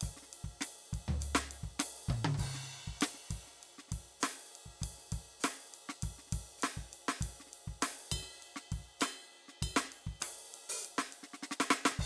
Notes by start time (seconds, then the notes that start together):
0.01 kick, hi-hat pedal, ride
0.09 kick
0.17 snare
0.22 snare
0.26 snare
0.33 ride
0.44 kick
0.60 snare, hi-hat pedal, ride
0.93 kick, ride
0.99 kick
1.08 floor tom
1.20 hi-hat pedal, ride
1.35 snare
1.51 ride
1.63 kick
1.79 snare, hi-hat pedal, ride
2.08 kick, mid tom
2.25 high tom
2.34 hi-hat pedal, high tom
2.39 kick, crash
2.45 kick
2.54 snare
2.63 snare
2.87 kick
3.01 snare, hi-hat pedal, ride
3.14 snare
3.30 kick, ride
3.36 kick
3.47 snare
3.61 hi-hat pedal, ride
3.78 snare
3.88 kick, snare, ride
3.98 kick
4.20 snare, hi-hat pedal, ride
4.55 ride
4.66 kick, snare
4.79 kick, snare, hi-hat pedal
4.83 ride
4.92 kick
4.98 snare
5.01 snare
5.04 snare
5.12 kick, ride
5.18 kick
5.40 hi-hat pedal, ride
5.44 snare
5.74 ride
5.89 snare
6.02 kick, hi-hat pedal, ride
6.10 kick
6.18 snare
6.27 snare
6.32 kick, ride
6.39 kick
6.58 hi-hat pedal
6.62 snare, ride
6.77 kick, snare
6.82 kick
6.88 hi-hat pedal
6.93 ride
7.08 snare
7.18 kick, hi-hat pedal
7.22 ride
7.28 kick
7.40 snare
7.46 snare
7.53 ride
7.67 kick
7.82 snare, hi-hat pedal, ride
7.92 snare
8.12 kick, ride bell
8.19 kick, snare
8.39 hi-hat pedal, ride
8.56 snare
8.72 kick, ride
8.78 kick
8.82 kick
9.00 snare, hi-hat pedal, ride bell
9.32 ride
9.48 snare
9.62 kick, ride bell
9.68 kick
9.76 snare
9.85 snare
9.92 ride
10.06 kick
10.12 kick
10.20 cross-stick, hi-hat pedal, ride
10.54 ride
10.69 open hi-hat
10.85 ride
10.98 snare
11.09 hi-hat pedal, ride
11.23 snare
11.33 snare
11.43 snare
11.51 snare
11.60 snare
11.70 snare
11.85 snare
11.92 cross-stick
11.99 kick, crash